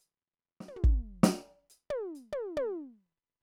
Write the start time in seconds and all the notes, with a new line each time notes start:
0.01 hi-hat pedal
0.60 snare
0.68 high tom
0.76 floor tom
0.84 kick
1.23 open hi-hat, snare
1.32 open hi-hat
1.70 hi-hat pedal
1.90 high tom
2.15 hi-hat pedal
2.32 high tom
2.56 high tom